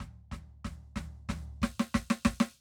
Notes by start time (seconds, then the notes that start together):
0.00 kick, snare, floor tom
0.31 kick, snare, floor tom
0.64 kick, snare, floor tom
0.96 kick, snare, floor tom
1.29 kick, snare, floor tom
1.62 kick, snare
1.79 snare
1.94 kick, snare
2.10 snare
2.25 kick, snare
2.40 snare